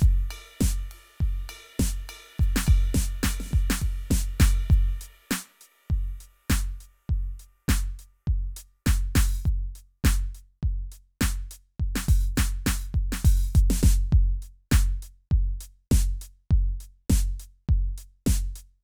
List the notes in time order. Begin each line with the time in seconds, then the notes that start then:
0.01 kick, hi-hat pedal
0.31 ride bell
0.61 kick, snare, hi-hat pedal
0.83 kick
0.92 ride
1.21 kick
1.44 kick
1.50 ride bell
1.80 kick, snare, hi-hat pedal, ride
2.10 ride bell
2.39 kick, hi-hat pedal, ride
2.57 snare
2.68 kick, ride bell
2.95 kick, snare
3.24 kick, snare, ride bell
3.41 snare
3.47 snare
3.51 kick, snare, ride
3.71 snare
3.82 kick, ride
4.11 kick, snare
4.41 kick, snare, ride bell
4.71 kick, hi-hat pedal
5.02 closed hi-hat
5.32 snare
5.62 closed hi-hat
5.91 kick, crash
6.21 closed hi-hat
6.50 kick, snare
6.81 closed hi-hat
7.10 kick
7.40 closed hi-hat
7.69 kick, snare
8.00 closed hi-hat
8.28 kick, ride
8.57 closed hi-hat
8.87 kick, snare
9.16 open hi-hat, kick, snare
9.45 kick, hi-hat pedal
9.76 closed hi-hat
10.05 kick, snare
10.35 closed hi-hat
10.64 kick
10.93 closed hi-hat
11.22 kick, snare
11.52 closed hi-hat
11.80 kick
11.96 snare
12.09 open hi-hat, kick
12.36 kick, snare, hi-hat pedal
12.67 open hi-hat, kick, snare
12.93 kick, hi-hat pedal
13.13 snare
13.25 open hi-hat, kick
13.53 closed hi-hat, kick, hi-hat pedal
13.71 snare
13.84 kick, snare
14.11 kick, hi-hat pedal
14.43 closed hi-hat
14.72 kick, snare
15.03 closed hi-hat
15.32 kick
15.61 closed hi-hat
15.92 kick, snare
16.22 closed hi-hat
16.51 kick, ride
16.81 closed hi-hat
17.10 kick, snare
17.40 closed hi-hat
17.70 kick
17.99 closed hi-hat
18.27 kick, snare
18.56 closed hi-hat